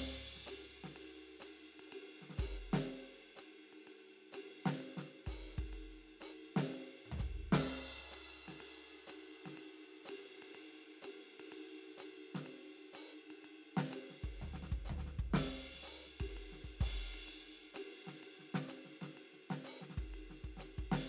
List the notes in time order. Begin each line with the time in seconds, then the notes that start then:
0.35 snare
0.46 hi-hat pedal, ride
0.84 snare, ride
0.92 hi-hat pedal
0.96 ride
1.40 hi-hat pedal, ride
1.79 ride
1.87 hi-hat pedal
1.92 ride
2.21 snare
2.29 snare
2.37 kick, hi-hat pedal, ride
2.73 snare, ride
2.85 hi-hat pedal, ride
3.36 hi-hat pedal, ride
3.73 ride
3.85 hi-hat pedal, ride
4.32 hi-hat pedal, ride
4.65 snare, ride
4.79 hi-hat pedal, ride
4.97 snare
5.26 kick, hi-hat pedal, ride
5.58 kick, ride
5.72 hi-hat pedal, ride
6.20 hi-hat pedal, ride
6.56 snare, ride
6.67 hi-hat pedal
6.74 ride
7.05 high tom
7.11 floor tom
7.18 kick, hi-hat pedal
7.52 snare, crash
7.63 hi-hat pedal
7.98 snare
8.11 hi-hat pedal, ride
8.48 snare, ride
8.59 hi-hat pedal, ride
9.07 hi-hat pedal, ride
9.45 snare, ride
9.57 ride
10.05 hi-hat pedal, ride
10.26 hi-hat pedal
10.42 ride
10.53 hi-hat pedal, ride
11.02 hi-hat pedal, ride
11.39 ride
11.47 hi-hat pedal
11.52 ride
11.97 hi-hat pedal, ride
12.35 snare, ride
12.44 hi-hat pedal, ride
12.93 hi-hat pedal, ride
13.30 ride
13.41 hi-hat pedal, ride
13.77 snare
13.90 hi-hat pedal, ride
14.10 snare
14.23 kick
14.35 hi-hat pedal
14.41 floor tom
14.53 snare
14.62 snare
14.71 kick
14.85 hi-hat pedal
14.89 floor tom
14.98 snare
15.06 snare
15.19 kick
15.31 snare, hi-hat pedal
15.35 ride
15.74 snare
15.83 hi-hat pedal
15.87 ride
16.06 snare
16.20 kick, ride
16.28 hi-hat pedal
16.37 ride
16.52 snare
16.64 kick
16.80 kick, hi-hat pedal, ride
17.14 ride
17.25 hi-hat pedal, ride
17.74 hi-hat pedal, ride
18.07 snare, ride
18.18 hi-hat pedal
18.23 ride
18.39 snare
18.54 snare
18.68 hi-hat pedal, ride
18.85 snare
19.01 snare, ride
19.14 hi-hat pedal, ride
19.33 snare
19.50 snare
19.64 hi-hat pedal, ride
19.81 snare
19.90 snare
19.97 kick, ride
20.08 hi-hat pedal
20.14 ride
20.30 snare
20.44 kick
20.57 snare, hi-hat pedal, ride
20.78 kick
20.91 snare, ride
21.03 hi-hat pedal